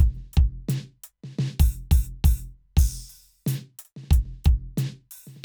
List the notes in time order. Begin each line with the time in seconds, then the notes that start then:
0.01 closed hi-hat, kick, snare
0.12 snare, hi-hat pedal
0.18 snare
0.22 snare
0.26 snare
0.35 closed hi-hat, kick
0.71 closed hi-hat, snare
1.06 closed hi-hat
1.26 snare
1.41 snare
1.62 open hi-hat, kick
1.74 hi-hat pedal
1.93 open hi-hat, kick
2.07 hi-hat pedal
2.26 open hi-hat, kick
2.39 hi-hat pedal
2.79 open hi-hat, kick, crash
3.11 open hi-hat
3.48 open hi-hat, snare
3.81 closed hi-hat
3.87 closed hi-hat
3.98 snare
4.06 snare
4.13 closed hi-hat, kick
4.18 snare
4.27 snare
4.33 snare
4.46 closed hi-hat, kick
4.79 closed hi-hat, snare
5.13 open hi-hat
5.19 open hi-hat
5.29 snare
5.38 snare